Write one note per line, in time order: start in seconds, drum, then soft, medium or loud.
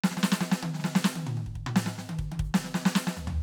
0.04 snare loud
0.11 snare medium
0.17 snare medium
0.23 snare loud
0.32 snare loud
0.41 snare loud
0.52 snare loud
0.63 high tom loud
0.74 snare medium
0.79 snare medium
0.84 snare loud
0.95 snare loud
1.04 snare loud
1.16 high tom loud
1.27 mid tom loud
1.37 high tom medium
1.46 kick soft
1.55 kick soft
1.66 mid tom loud
1.76 snare loud
1.86 snare medium
1.98 snare medium
2.03 hi-hat pedal soft
2.09 high tom loud
2.19 kick medium
2.19 hi-hat pedal soft
2.32 high tom loud
2.39 kick medium
2.44 hi-hat pedal soft
2.54 snare loud
2.74 snare loud
2.85 snare loud
2.95 snare loud
3.07 snare loud
3.16 floor tom loud
3.16 hi-hat pedal medium
3.27 floor tom loud